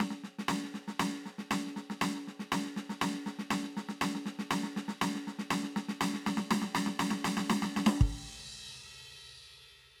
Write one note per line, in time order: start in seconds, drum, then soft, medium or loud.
0.00 snare medium
0.10 snare soft
0.23 snare soft
0.38 snare soft
0.48 snare loud
0.64 snare soft
0.88 snare soft
0.99 snare loud
1.14 snare soft
1.25 snare soft
1.38 snare soft
1.51 snare loud
1.66 snare soft
1.76 snare soft
1.90 snare soft
2.01 snare loud
2.15 snare soft
2.27 snare soft
2.39 snare soft
2.52 snare loud
2.65 snare soft
2.76 snare medium
2.89 snare soft
3.01 snare loud
3.14 snare soft
3.26 snare medium
3.39 snare soft
3.50 snare loud
3.63 snare soft
3.77 snare medium
3.89 snare soft
4.01 snare loud
4.15 snare soft
4.26 snare medium
4.39 snare medium
4.51 snare loud
4.63 snare medium
4.76 snare medium
4.88 snare medium
5.01 snare loud
5.15 snare soft
5.27 snare soft
5.39 snare medium
5.50 snare loud
5.63 snare medium
5.76 snare medium
5.88 snare medium
6.01 snare loud
6.13 snare medium
6.26 snare loud
6.37 snare medium
6.51 snare loud
6.62 snare medium
6.75 snare loud
6.86 snare medium
6.99 snare loud
7.10 snare loud
7.24 snare loud
7.37 snare loud
7.49 snare loud
7.62 snare loud
7.76 snare loud
7.86 snare loud
8.00 kick loud
8.00 crash loud